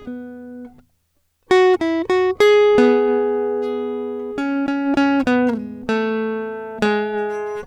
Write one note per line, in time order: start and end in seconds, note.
0.09 0.74 B3
1.52 1.78 F#4
1.82 2.06 E4
2.10 2.36 F#4
2.41 4.45 G#4
2.79 4.35 B3
4.38 4.69 C#4
4.69 4.98 C#4
4.98 5.25 C#4
5.28 5.49 B3
5.50 5.61 A3
5.89 6.81 A3
6.83 7.65 G#3